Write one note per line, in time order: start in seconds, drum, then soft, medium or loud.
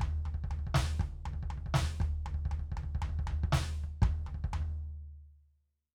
0.01 kick medium
0.01 floor tom loud
0.26 floor tom medium
0.35 kick medium
0.45 kick medium
0.52 floor tom loud
0.60 kick soft
0.68 kick medium
0.75 snare loud
0.75 floor tom loud
1.00 kick medium
1.00 floor tom loud
1.26 floor tom loud
1.34 kick soft
1.44 kick medium
1.51 floor tom loud
1.58 kick soft
1.67 kick medium
1.75 snare loud
1.75 floor tom loud
2.01 kick medium
2.01 floor tom loud
2.27 floor tom loud
2.35 kick soft
2.46 kick medium
2.52 floor tom loud
2.60 kick soft
2.73 kick medium
2.78 floor tom loud
2.84 kick soft
2.96 kick medium
3.03 floor tom loud
3.10 kick soft
3.20 kick medium
3.28 kick medium
3.28 floor tom loud
3.44 kick medium
3.53 kick soft
3.53 snare loud
3.53 floor tom loud
3.84 kick soft
4.03 kick loud
4.03 floor tom loud
4.27 floor tom medium
4.35 kick soft
4.45 kick medium
4.54 floor tom loud
4.62 kick soft